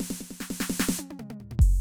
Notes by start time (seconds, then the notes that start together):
0.00 snare
0.10 snare
0.20 snare
0.30 snare
0.40 snare
0.50 snare
0.60 snare
0.69 snare, hi-hat pedal
0.79 snare
0.88 snare
0.99 high tom
1.10 high tom
1.19 mid tom
1.30 mid tom
1.40 floor tom
1.51 floor tom
1.59 kick, crash